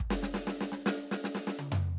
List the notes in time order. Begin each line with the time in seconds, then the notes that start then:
0.00 kick
0.10 snare
0.23 snare
0.34 snare
0.47 snare
0.61 snare
0.72 snare
0.86 snare
1.11 snare
1.24 snare
1.35 snare
1.47 snare
1.59 high tom
1.72 mid tom